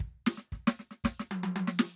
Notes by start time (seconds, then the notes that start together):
0.00 kick
0.26 snare
0.37 snare
0.52 kick, snare
0.67 snare
0.79 snare
0.91 snare
1.04 kick, snare
1.20 snare
1.31 high tom
1.43 high tom
1.56 high tom
1.68 snare
1.79 snare